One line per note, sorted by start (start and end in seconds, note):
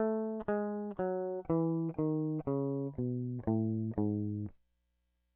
0.00 0.45 A3
0.50 0.96 G#3
1.00 1.44 F#3
1.51 1.93 E3
2.00 2.44 D#3
2.49 2.93 C#3
3.00 3.44 B2
3.49 3.95 A2
4.00 4.52 G#2